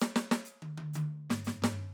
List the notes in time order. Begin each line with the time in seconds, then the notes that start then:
0.00 snare, hi-hat pedal
0.16 snare, hi-hat pedal
0.31 snare
0.45 hi-hat pedal
0.62 high tom
0.78 high tom
0.93 hi-hat pedal, high tom
1.30 snare, floor tom
1.44 snare, floor tom, hi-hat pedal
1.62 snare, floor tom